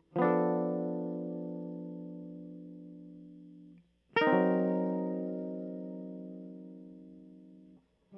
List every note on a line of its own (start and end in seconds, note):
0.17 3.83 F3
0.17 3.81 B3
0.22 3.77 D4
0.22 2.67 A4
4.17 7.70 A#4
4.21 7.79 D#4
4.27 7.88 C4
4.33 7.82 F#3